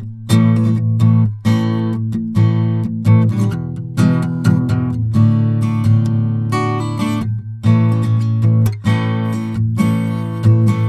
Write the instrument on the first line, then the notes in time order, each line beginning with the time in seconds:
acoustic guitar
0.00 A2
0.31 A2 E3 A3 C#4
0.58 E3 A3
0.66 A2 E3 A3
0.78 A2 E3 A3
1.01 A2 E3 A3
1.46 A2 E3 A3 C#4
1.95 A2 A3
2.14 A2 E3 A3
2.37 A2 E3 A3
2.80 A3
2.86 A2 E3
3.07 A2 E3 A3
3.24 A3
3.32 A2 G3
3.43 E2 A#2
3.54 E2 B2
3.78 E2 B2
3.99 E2 B2 E3
4.24 E2 B2
4.46 E2 B2
4.71 E2 B2
4.92 E2 A2
5.15 A2 D3 A3 D4
5.63 A2 D3 A3 D4
5.85 E2 A2 D3 A3 D4
6.54 A3 D4 F#4
6.71 E4
6.99 D3 A3 D4
7.23 A2
7.40 A2
7.65 A2 E3 A3
7.69 C#4
7.87 A2
7.91 A3 C#4
8.05 A2 E3 A3
8.19 A3
8.44 A2 E3 A3
8.67 C#3
8.87 A2 E3 A3 C#4
9.34 E3 A3
9.50 A3
9.56 A2 E3
9.80 A2 E3 A3 C#4
10.45 A2 E3 A3
10.49 C#4
10.68 A2 E3 A3 C#4